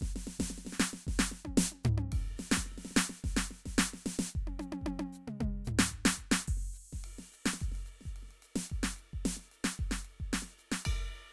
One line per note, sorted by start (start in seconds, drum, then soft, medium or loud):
0.02 kick soft
0.02 snare soft
0.08 kick soft
0.16 snare soft
0.24 snare soft
0.24 hi-hat pedal soft
0.40 kick soft
0.40 snare medium
0.45 kick soft
0.58 snare soft
0.65 snare soft
0.67 snare soft
0.73 snare soft
0.79 snare loud
0.79 hi-hat pedal soft
0.94 snare soft
1.07 kick soft
1.07 snare soft
1.14 kick soft
1.20 snare loud
1.30 snare soft
1.30 hi-hat pedal soft
1.45 kick soft
1.45 high tom medium
1.58 snare loud
1.72 high tom soft
1.84 floor tom loud
1.84 hi-hat pedal medium
1.98 high tom medium
2.13 kick medium
2.13 ride loud
2.21 kick soft
2.25 kick soft
2.38 snare soft
2.38 hi-hat pedal soft
2.52 snare loud
2.57 kick soft
2.57 snare soft
2.67 snare soft
2.72 snare soft
2.76 snare soft
2.78 snare soft
2.85 snare soft
2.91 snare soft
2.91 hi-hat pedal soft
2.97 snare loud
3.10 snare soft
3.25 kick soft
3.25 snare soft
3.31 kick soft
3.37 snare medium
3.48 snare soft
3.48 hi-hat pedal soft
3.66 kick soft
3.66 snare soft
3.79 snare loud
3.94 snare soft
4.06 snare medium
4.06 hi-hat pedal soft
4.19 snare medium
4.36 kick soft
4.42 kick soft
4.48 high tom medium
4.60 hi-hat pedal medium
4.60 high tom medium
4.73 high tom medium
4.82 kick soft
4.87 high tom loud
5.00 high tom loud
5.13 hi-hat pedal medium
5.28 mid tom medium
5.41 kick soft
5.41 mid tom loud
5.49 kick soft
5.65 hi-hat pedal medium
5.65 floor tom medium
5.79 snare loud
5.92 kick soft
6.06 snare loud
6.18 kick soft
6.18 hi-hat pedal soft
6.32 snare loud
6.48 kick medium
6.48 crash loud
6.56 kick soft
6.56 snare soft
6.62 kick soft
6.74 hi-hat pedal medium
6.93 kick soft
6.93 snare soft
7.01 kick soft
7.01 ride loud
7.19 snare soft
7.32 hi-hat pedal medium
7.32 ride medium
7.46 snare medium
7.54 snare soft
7.61 kick soft
7.61 ride medium
7.69 kick soft
7.69 snare soft
7.76 ride medium
7.85 hi-hat pedal soft
7.85 ride soft
8.01 snare soft
8.06 kick soft
8.17 ride medium
8.23 snare soft
8.29 snare soft
8.29 ride soft
8.42 hi-hat pedal medium
8.42 ride medium
8.56 snare medium
8.70 kick soft
8.70 ride medium
8.84 snare medium
8.96 hi-hat pedal medium
8.96 ride medium
9.14 kick soft
9.26 snare medium
9.26 ride medium
9.37 snare soft
9.37 ride medium
9.52 hi-hat pedal soft
9.52 ride medium
9.65 snare medium
9.79 kick soft
9.79 ride medium
9.86 kick soft
9.92 snare medium
10.02 hi-hat pedal soft
10.02 ride medium
10.21 kick soft
10.34 snare medium
10.34 ride medium
10.43 snare soft
10.49 ride soft
10.58 hi-hat pedal soft
10.58 ride soft
10.72 snare medium
10.86 kick medium
10.86 ride bell loud
10.94 kick soft
10.98 kick soft